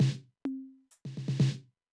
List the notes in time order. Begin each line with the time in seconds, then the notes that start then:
0.00 snare
0.45 closed hi-hat, high tom
0.91 hi-hat pedal
1.05 snare
1.17 snare
1.28 snare
1.40 snare